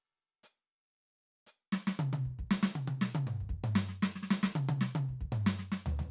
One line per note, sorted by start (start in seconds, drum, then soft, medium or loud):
0.43 hi-hat pedal medium
1.47 hi-hat pedal medium
1.72 snare loud
1.87 snare loud
1.99 high tom loud
2.13 high tom loud
2.25 kick soft
2.39 kick soft
2.47 kick soft
2.47 snare loud
2.63 snare loud
2.75 high tom loud
2.88 high tom loud
3.01 snare loud
3.15 high tom loud
3.27 mid tom loud
3.40 kick soft
3.49 kick medium
3.64 mid tom loud
3.75 snare loud
3.89 snare soft
4.02 snare loud
4.15 snare medium
4.23 snare medium
4.31 snare loud
4.43 kick soft
4.43 snare loud
4.55 high tom loud
4.69 high tom loud
4.81 snare loud
4.95 high tom loud
5.09 kick soft
5.20 kick medium
5.32 mid tom loud
5.46 snare loud
5.59 snare medium
5.72 snare medium
5.86 floor tom loud
5.99 floor tom medium